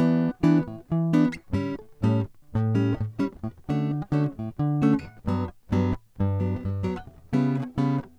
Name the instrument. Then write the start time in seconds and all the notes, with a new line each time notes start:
acoustic guitar
0.01 E3 B3 D4 G4
0.44 E3 B3 D4 G4
0.69 A2
0.93 E3
1.14 B3 D4 G4
1.55 G3 C#4 E4
2.04 A2 G3 C#4 E4
2.56 A2
2.76 G3 C#4 E4
3.20 G3 C#4 E4
3.45 A2
3.70 D3 A3 C#4 F#4
4.13 D3 A3 C#4 F#4
4.40 A2
4.61 D3
4.83 A3 C#4 F#4
5.29 G2 F#3 B3 D4
5.74 G2 F#3 B3
5.86 D4
6.21 G2
6.41 F#3 B3 D4
6.55 F#3
6.67 G2
6.85 F#3 B3 D4
7.34 C#3 G3 B3 E4
7.79 C#3 G3 B3 E4